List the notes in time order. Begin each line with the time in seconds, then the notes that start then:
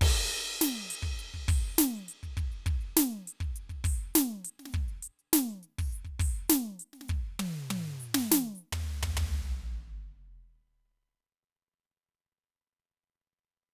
0.01 kick, crash, ride
0.34 closed hi-hat
0.46 closed hi-hat
0.61 snare, closed hi-hat
0.76 closed hi-hat
0.90 closed hi-hat
1.02 kick, closed hi-hat
1.19 closed hi-hat
1.34 kick, closed hi-hat
1.48 open hi-hat, kick
1.78 snare, closed hi-hat, hi-hat pedal
1.83 snare
1.95 closed hi-hat
2.08 closed hi-hat
2.23 kick, closed hi-hat
2.37 kick, closed hi-hat
2.52 closed hi-hat
2.66 kick, closed hi-hat
2.81 closed hi-hat
2.97 snare, closed hi-hat
3.11 closed hi-hat
3.27 closed hi-hat
3.40 kick, closed hi-hat
3.56 closed hi-hat
3.69 kick, closed hi-hat
3.84 open hi-hat, kick
4.14 snare, closed hi-hat, hi-hat pedal
4.30 closed hi-hat
4.44 closed hi-hat
4.59 snare, closed hi-hat
4.65 snare
4.72 kick, closed hi-hat
4.88 closed hi-hat
5.02 closed hi-hat
5.19 closed hi-hat
5.33 snare, closed hi-hat
5.38 snare
5.49 closed hi-hat
5.63 closed hi-hat
5.78 kick, open hi-hat
5.92 hi-hat pedal
6.04 kick, closed hi-hat
6.19 open hi-hat, kick
6.48 snare, closed hi-hat, hi-hat pedal
6.65 closed hi-hat
6.79 closed hi-hat
6.93 snare, closed hi-hat
7.01 snare
7.08 kick, closed hi-hat
7.39 high tom
7.54 snare
7.70 high tom
7.85 snare
8.00 hi-hat pedal
8.14 snare
8.31 snare
8.55 hi-hat pedal
8.72 floor tom
9.02 floor tom
9.17 floor tom